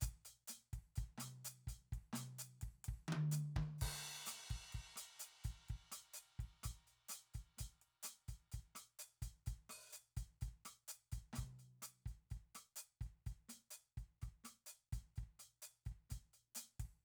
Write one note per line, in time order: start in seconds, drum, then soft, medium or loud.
0.01 open hi-hat soft
0.01 kick soft
0.01 hi-hat pedal medium
0.08 kick soft
0.25 closed hi-hat soft
0.48 closed hi-hat medium
0.48 snare soft
0.48 hi-hat pedal medium
0.73 kick soft
0.73 closed hi-hat soft
0.78 kick soft
0.96 closed hi-hat soft
0.96 kick soft
1.04 kick soft
1.18 closed hi-hat medium
1.18 cross-stick soft
1.18 snare soft
1.18 mid tom soft
1.45 hi-hat pedal medium
1.68 closed hi-hat soft
1.68 kick soft
1.73 kick soft
1.93 kick soft
1.93 closed hi-hat soft
1.98 kick soft
2.13 closed hi-hat medium
2.13 snare soft
2.13 mid tom soft
2.18 cross-stick soft
2.39 hi-hat pedal medium
2.62 kick soft
2.62 closed hi-hat soft
2.68 kick soft
2.85 kick soft
2.85 closed hi-hat soft
2.94 kick soft
3.08 high tom medium
3.13 high tom loud
3.32 hi-hat pedal medium
3.32 high tom soft
3.56 kick soft
3.56 high tom medium
3.62 kick soft
3.79 kick soft
3.79 hi-hat pedal soft
3.79 crash medium
4.26 closed hi-hat medium
4.26 cross-stick soft
4.26 snare soft
4.26 hi-hat pedal medium
4.51 kick soft
4.51 closed hi-hat soft
4.56 kick soft
4.73 kick soft
4.73 closed hi-hat soft
4.80 kick soft
4.96 closed hi-hat medium
4.96 cross-stick soft
5.20 closed hi-hat soft
5.20 hi-hat pedal medium
5.44 closed hi-hat soft
5.44 kick soft
5.50 kick soft
5.69 kick soft
5.69 closed hi-hat soft
5.75 kick soft
5.92 closed hi-hat medium
5.92 cross-stick soft
6.14 closed hi-hat soft
6.14 hi-hat pedal medium
6.39 kick soft
6.39 closed hi-hat soft
6.45 kick soft
6.64 closed hi-hat medium
6.64 kick soft
6.64 cross-stick soft
6.71 kick soft
6.87 closed hi-hat soft
7.09 closed hi-hat medium
7.09 cross-stick soft
7.09 hi-hat pedal medium
7.34 closed hi-hat soft
7.34 kick soft
7.58 closed hi-hat medium
7.58 kick soft
7.58 snare soft
7.82 closed hi-hat soft
8.03 closed hi-hat medium
8.03 cross-stick soft
8.03 snare soft
8.03 hi-hat pedal medium
8.28 closed hi-hat soft
8.28 kick soft
8.52 closed hi-hat soft
8.52 kick soft
8.59 kick soft
8.75 closed hi-hat medium
8.75 cross-stick soft
8.99 hi-hat pedal medium
9.22 closed hi-hat soft
9.22 kick soft
9.28 kick soft
9.47 closed hi-hat soft
9.47 kick soft
9.53 kick soft
9.69 open hi-hat medium
9.69 cross-stick soft
9.69 snare soft
9.93 hi-hat pedal medium
10.17 closed hi-hat soft
10.17 kick soft
10.22 kick soft
10.41 closed hi-hat soft
10.41 kick soft
10.48 kick soft
10.65 closed hi-hat medium
10.65 cross-stick soft
10.88 hi-hat pedal medium
11.12 closed hi-hat soft
11.12 kick soft
11.18 kick soft
11.33 closed hi-hat medium
11.33 cross-stick soft
11.33 snare soft
11.33 hi-hat pedal soft
11.33 mid tom soft
11.39 kick soft
11.44 kick soft
11.59 closed hi-hat soft
11.82 cross-stick soft
11.82 hi-hat pedal medium
12.06 closed hi-hat soft
12.06 kick soft
12.11 kick soft
12.31 closed hi-hat soft
12.31 kick soft
12.37 kick soft
12.55 closed hi-hat soft
12.55 cross-stick soft
12.76 closed hi-hat soft
12.76 hi-hat pedal medium
13.01 closed hi-hat soft
13.01 kick soft
13.06 kick soft
13.27 closed hi-hat soft
13.27 kick soft
13.32 kick soft
13.49 closed hi-hat soft
13.49 snare soft
13.71 closed hi-hat soft
13.71 hi-hat pedal medium
13.98 closed hi-hat soft
13.98 kick soft
14.22 closed hi-hat soft
14.22 kick soft
14.22 cross-stick soft
14.28 kick soft
14.44 closed hi-hat soft
14.44 cross-stick soft
14.44 snare soft
14.67 closed hi-hat soft
14.67 hi-hat pedal medium
14.93 closed hi-hat soft
14.93 kick soft
14.93 snare soft
14.98 kick soft
15.16 closed hi-hat soft
15.16 kick soft
15.23 kick soft
15.40 closed hi-hat soft
15.40 cross-stick soft
15.62 hi-hat pedal medium
15.86 closed hi-hat soft
15.86 kick soft
15.92 kick soft
16.10 closed hi-hat soft
16.10 kick soft
16.10 snare soft
16.17 kick soft
16.34 closed hi-hat soft
16.55 closed hi-hat medium
16.55 snare soft
16.55 hi-hat pedal medium
16.80 kick soft
16.80 closed hi-hat soft
16.85 kick soft